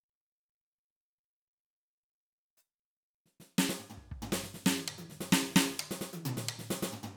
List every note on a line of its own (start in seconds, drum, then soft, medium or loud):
2.57 hi-hat pedal soft
3.26 snare soft
3.40 snare soft
3.58 snare loud
3.69 snare medium
3.79 floor tom medium
3.90 floor tom medium
3.97 kick soft
4.11 kick soft
4.22 floor tom loud
4.32 snare loud
4.43 snare medium
4.54 snare medium
4.66 snare loud
4.76 high tom medium
4.87 mid tom loud
4.98 high tom medium
5.10 snare soft
5.20 snare medium
5.32 snare loud
5.42 snare soft
5.47 snare soft
5.51 snare soft
5.56 snare loud
5.65 snare soft
5.70 snare soft
5.74 snare soft
5.79 high tom loud
5.91 snare medium
6.01 snare medium
6.13 high tom loud
6.25 mid tom loud
6.37 snare medium
6.48 mid tom loud
6.59 snare medium
6.70 snare loud
6.82 snare loud
6.92 floor tom medium
7.03 floor tom loud